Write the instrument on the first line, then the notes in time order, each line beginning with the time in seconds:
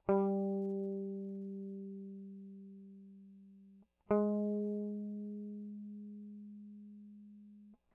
electric guitar
0.09 G3
4.11 G#3